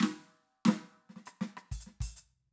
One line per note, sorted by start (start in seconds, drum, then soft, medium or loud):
0.00 snare loud
0.03 snare loud
0.66 snare loud
0.68 snare loud
1.10 snare soft
1.16 snare soft
1.26 cross-stick medium
1.26 hi-hat pedal medium
1.41 snare medium
1.57 cross-stick medium
1.72 open hi-hat medium
1.72 kick soft
1.81 hi-hat pedal medium
1.87 snare soft
2.01 kick medium
2.01 open hi-hat loud
2.17 hi-hat pedal medium